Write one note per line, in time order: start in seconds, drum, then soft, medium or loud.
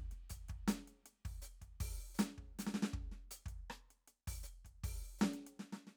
0.11 snare soft
0.11 closed hi-hat soft
0.30 closed hi-hat medium
0.30 kick soft
0.48 kick soft
0.48 closed hi-hat soft
0.68 closed hi-hat medium
0.68 snare medium
0.88 closed hi-hat soft
1.06 closed hi-hat soft
1.25 kick soft
1.25 open hi-hat soft
1.42 closed hi-hat soft
1.42 hi-hat pedal medium
1.61 kick soft
1.61 closed hi-hat soft
1.80 open hi-hat medium
1.80 kick soft
2.14 hi-hat pedal soft
2.19 closed hi-hat medium
2.19 snare medium
2.38 kick soft
2.59 snare soft
2.59 hi-hat pedal medium
2.67 snare soft
2.74 snare soft
2.82 snare medium
2.93 kick soft
3.11 snare soft
3.31 closed hi-hat medium
3.46 kick soft
3.46 closed hi-hat soft
3.70 cross-stick medium
3.90 closed hi-hat soft
4.08 closed hi-hat soft
4.27 open hi-hat medium
4.27 kick soft
4.43 hi-hat pedal medium
4.65 kick soft
4.65 closed hi-hat soft
4.84 open hi-hat medium
4.84 kick soft
5.19 snare medium
5.19 hi-hat pedal soft
5.33 closed hi-hat soft
5.47 closed hi-hat soft
5.59 snare soft
5.73 snare soft
5.87 snare soft